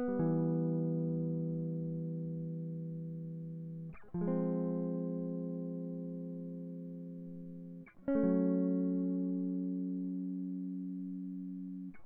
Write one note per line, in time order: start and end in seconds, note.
0.00 3.88 B3
0.09 3.98 G3
0.20 3.97 E3
4.15 7.86 F3
4.22 7.86 G#3
4.28 7.86 C4
8.08 11.94 C#4
8.16 10.61 A3
8.24 11.94 F#3